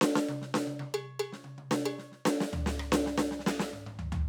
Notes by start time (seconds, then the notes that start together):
0.01 snare
0.16 snare
0.29 high tom
0.42 snare
0.54 snare
0.67 high tom
0.79 high tom
0.94 percussion
1.20 percussion
1.32 snare
1.44 high tom
1.58 high tom
1.71 snare
1.86 percussion
1.98 snare
2.12 snare
2.25 snare
2.40 snare
2.53 floor tom
2.66 snare
2.79 cross-stick
2.92 snare
3.06 snare
3.18 snare
3.31 snare
3.39 snare
3.46 snare
3.59 snare
3.73 mid tom
3.86 mid tom
3.99 floor tom
4.12 floor tom